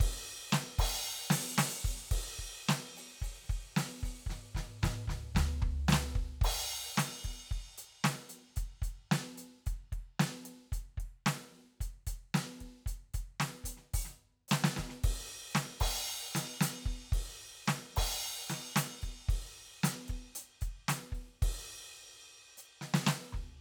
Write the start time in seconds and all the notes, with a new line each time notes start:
0.01 kick, crash
0.25 open hi-hat
0.50 snare, hi-hat pedal
0.79 kick, crash
1.04 open hi-hat
1.31 open hi-hat, snare
1.59 open hi-hat, snare
1.85 kick
1.97 snare
2.12 kick, crash
2.40 kick
2.69 snare
2.97 open hi-hat
3.22 open hi-hat, kick
3.43 snare
3.50 open hi-hat, kick
3.77 open hi-hat, snare
4.04 open hi-hat, kick, snare
4.27 kick, snare
4.31 mid tom
4.55 kick, snare, mid tom
4.84 kick, snare, mid tom
5.08 kick, snare, floor tom
5.36 kick, snare, floor tom
5.63 kick, floor tom
5.89 snare, hi-hat pedal
5.93 snare
6.16 kick
6.42 kick, crash
6.96 closed hi-hat, snare, hi-hat pedal
7.25 kick, closed hi-hat
7.52 kick, closed hi-hat
7.78 closed hi-hat
8.05 snare
8.10 snare
8.30 closed hi-hat
8.51 snare
8.57 closed hi-hat, kick
8.83 closed hi-hat, kick
9.12 snare
9.38 closed hi-hat
9.67 closed hi-hat, kick
9.93 kick, closed hi-hat
10.20 snare
10.46 closed hi-hat
10.73 closed hi-hat, kick
10.98 kick, closed hi-hat
11.27 snare
11.81 closed hi-hat, kick
12.07 closed hi-hat, kick
12.35 snare
12.61 kick, closed hi-hat
12.87 closed hi-hat, kick
13.15 closed hi-hat, kick
13.41 snare
13.65 closed hi-hat, kick
13.78 snare
13.83 snare
13.94 open hi-hat, kick
14.05 snare
14.49 snare, hi-hat pedal
14.65 snare
14.77 kick, snare
14.90 snare
15.04 kick, crash
15.27 open hi-hat
15.51 hi-hat pedal
15.56 snare
15.81 kick, crash
16.08 closed hi-hat
16.36 closed hi-hat, snare
16.61 closed hi-hat, snare
16.86 kick
17.13 kick, crash
17.39 open hi-hat
17.66 snare, hi-hat pedal
17.97 kick, crash
18.23 closed hi-hat
18.50 closed hi-hat, snare
18.77 closed hi-hat, snare
19.02 closed hi-hat, kick
19.29 kick, crash
19.53 closed hi-hat
19.84 closed hi-hat, snare
20.09 kick, closed hi-hat
20.36 closed hi-hat
20.62 closed hi-hat, kick
20.89 open hi-hat, snare
21.13 kick, open hi-hat
21.43 kick, crash
22.58 hi-hat pedal
22.82 snare
22.95 snare
23.07 snare
23.33 kick, floor tom